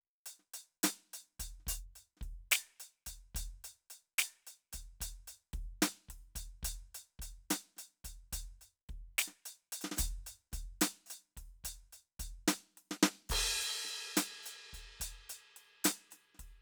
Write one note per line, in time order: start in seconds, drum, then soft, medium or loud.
0.25 closed hi-hat soft
0.39 snare soft
0.53 closed hi-hat medium
0.83 closed hi-hat loud
0.83 snare medium
1.13 closed hi-hat medium
1.39 closed hi-hat medium
1.39 kick soft
1.59 snare soft
1.66 open hi-hat medium
1.66 kick soft
1.95 closed hi-hat soft
2.16 snare soft
2.21 kick soft
2.21 closed hi-hat soft
2.51 closed hi-hat loud
2.51 snare medium
2.79 closed hi-hat soft
3.06 closed hi-hat medium
3.06 kick soft
3.34 closed hi-hat medium
3.34 kick soft
3.40 kick soft
3.64 closed hi-hat soft
3.90 closed hi-hat soft
4.18 closed hi-hat medium
4.18 snare medium
4.46 closed hi-hat soft
4.72 closed hi-hat soft
4.72 kick soft
4.72 snare soft
5.00 closed hi-hat medium
5.00 kick soft
5.27 closed hi-hat soft
5.53 kick soft
5.53 snare soft
5.53 closed hi-hat soft
5.82 closed hi-hat medium
5.82 snare medium
6.08 kick soft
6.08 closed hi-hat soft
6.35 closed hi-hat medium
6.35 kick soft
6.62 closed hi-hat medium
6.62 kick soft
6.94 closed hi-hat soft
7.19 closed hi-hat soft
7.19 kick soft
7.50 closed hi-hat medium
7.50 snare medium
7.76 closed hi-hat soft
7.76 snare soft
8.04 closed hi-hat soft
8.04 kick soft
8.32 closed hi-hat medium
8.32 kick soft
8.61 closed hi-hat soft
8.88 kick soft
8.88 closed hi-hat soft
9.18 closed hi-hat medium
9.18 snare medium
9.27 snare soft
9.45 closed hi-hat medium
9.72 closed hi-hat medium
9.80 open hi-hat soft
9.80 snare soft
9.91 snare soft
9.96 closed hi-hat medium
9.96 kick soft
9.96 snare soft
9.96 hi-hat pedal soft
10.05 kick soft
10.26 closed hi-hat soft
10.51 closed hi-hat soft
10.51 kick soft
10.51 snare soft
10.81 closed hi-hat loud
10.81 snare medium
11.06 closed hi-hat medium
11.06 hi-hat pedal soft
11.36 kick soft
11.36 closed hi-hat soft
11.64 closed hi-hat medium
11.64 kick soft
11.92 closed hi-hat soft
12.19 closed hi-hat medium
12.19 kick soft
12.47 closed hi-hat medium
12.47 snare loud
12.77 closed hi-hat soft
12.90 snare soft
13.02 snare loud
13.29 kick soft
13.29 hi-hat pedal medium
13.29 crash medium
13.35 kick soft
13.61 closed hi-hat soft
13.84 snare soft
13.84 closed hi-hat soft
14.16 closed hi-hat medium
14.16 snare medium
14.42 closed hi-hat soft
14.42 hi-hat pedal soft
14.73 closed hi-hat soft
14.73 kick soft
15.00 closed hi-hat medium
15.00 kick soft
15.29 closed hi-hat soft
15.56 closed hi-hat soft
15.84 closed hi-hat loud
15.84 snare medium
16.10 snare soft
16.10 closed hi-hat soft
16.10 hi-hat pedal soft
16.34 snare soft
16.39 kick soft
16.39 closed hi-hat soft